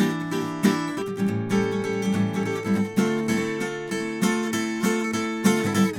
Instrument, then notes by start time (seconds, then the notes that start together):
acoustic guitar
0.00 E3 A#3 D4 E4 G4
0.22 D4 E4
0.33 E3 A#3 D4 E4 G4
0.45 A#3
0.65 E3 A#3 D4 E4 G4
0.89 E4
0.99 F#4 G4
1.08 A2 D3
1.17 E3 G3 C#4 G4
1.22 A2
1.30 A2 E3
1.51 G3 C#4 G4 A4
1.73 G3 C#4
1.85 G3 C#4 G4 A4
1.95 G3
2.04 E3 G3 C#4 G4
2.15 A2 E3 G3 C#4
2.36 G3 C#4 G4 A4
2.47 C#4 G4 A4
2.57 C#4
2.65 G3 C4 E4 A4
2.69 D3
2.77 G3 C4 E4 A4
2.87 A3
2.98 D3 A3 C4 F4 A4
3.30 A3 C4 E4 A4
3.39 A3 C4 E4
3.62 A3 C4 F4 A4
3.93 C4 E4 A4
4.02 A3
4.24 A3 C4 F4 A4
4.45 A4
4.55 A3 C4 E4 A4
4.82 A3 C4 F4
4.86 A4
5.06 A4
5.16 A3 C4 E4 A4
5.46 D3 A3 C4 F4 A4
5.66 D3 C4 E4 A4
5.77 D3 G3 C4 E4 A4